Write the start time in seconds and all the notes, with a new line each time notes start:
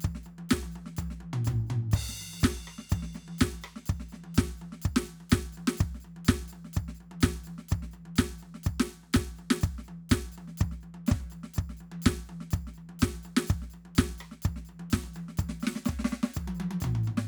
0.01 kick, high tom, percussion
0.15 snare
0.23 high tom, percussion
0.38 high tom
0.49 kick, snare, percussion
0.63 high tom
0.72 high tom, percussion
0.86 snare
0.97 kick, high tom, percussion
1.10 snare
1.21 high tom
1.33 floor tom
1.45 kick, floor tom, percussion
1.67 floor tom, percussion
1.92 kick, crash, percussion
2.09 snare
2.14 percussion
2.21 high tom
2.33 high tom
2.40 kick, percussion
2.44 snare
2.57 high tom
2.64 high tom, percussion
2.78 snare
2.90 kick, high tom, percussion
3.03 snare
3.13 snare, high tom, percussion
3.28 high tom
3.39 kick, snare, percussion
3.52 high tom
3.62 high tom, percussion
3.76 snare
3.86 kick, high tom, percussion
4.00 snare
4.09 high tom, percussion
4.13 snare
4.24 high tom
4.35 kick, snare, percussion
4.49 high tom
4.57 percussion
4.62 high tom
4.72 snare
4.82 kick, high tom, percussion
4.96 snare
5.05 high tom, percussion
5.20 high tom
5.30 kick, snare, percussion
5.45 high tom
5.53 percussion
5.58 high tom
5.67 snare
5.78 kick, percussion
5.83 high tom
5.95 snare
6.00 percussion
6.05 high tom
6.16 high tom
6.25 kick, snare, percussion
6.41 high tom
6.48 percussion
6.53 high tom
6.65 snare
6.73 kick, high tom, percussion
6.88 snare
6.95 percussion
7.00 high tom
7.11 high tom
7.21 kick, snare, percussion
7.36 high tom
7.44 high tom, percussion
7.58 snare
7.69 kick, high tom, percussion
7.83 snare
7.91 high tom, percussion
8.05 high tom
8.16 kick, snare, percussion
8.31 high tom
8.38 percussion
8.43 high tom
8.54 snare
8.63 kick, percussion
8.69 high tom
8.80 snare
8.87 percussion
8.91 high tom
9.03 high tom
9.13 kick, snare, percussion
9.27 high tom
9.36 high tom, percussion
9.51 snare
9.61 kick, high tom, percussion
9.78 snare
9.84 percussion
9.88 high tom
10.10 kick, snare, percussion
10.26 high tom
10.32 percussion
10.38 high tom
10.48 snare
10.58 kick, high tom, percussion
10.71 snare
10.81 high tom, percussion
10.94 high tom
11.07 snare, percussion
11.11 kick
11.20 high tom
11.30 high tom, percussion
11.44 snare
11.54 high tom, percussion
11.58 kick
11.70 snare
11.77 high tom, percussion
11.92 high tom
12.02 kick, snare, percussion
12.17 high tom
12.25 high tom, percussion
12.41 snare
12.51 kick, high tom, percussion
12.67 snare
12.74 percussion
12.78 high tom
12.89 high tom
12.99 kick, snare, percussion
13.14 high tom
13.23 high tom, percussion
13.37 snare
13.47 kick, high tom, percussion
13.62 snare
13.70 high tom, percussion
13.85 high tom
13.95 kick, snare, percussion
14.09 high tom
14.18 high tom, percussion
14.31 snare
14.42 kick, high tom, percussion
14.56 snare
14.65 percussion
14.69 high tom
14.80 high tom
14.90 kick, snare, percussion
15.04 high tom
15.14 high tom, percussion
15.29 snare
15.38 kick, high tom, percussion
15.49 snare
15.60 snare, percussion
15.67 snare
15.76 snare
15.85 kick, snare, percussion
15.99 snare
16.05 snare, percussion
16.12 snare
16.23 snare
16.34 kick, high tom, percussion
16.48 high tom
16.55 percussion
16.60 high tom
16.71 high tom
16.80 kick, floor tom, percussion
16.95 floor tom
17.04 floor tom, percussion
17.18 snare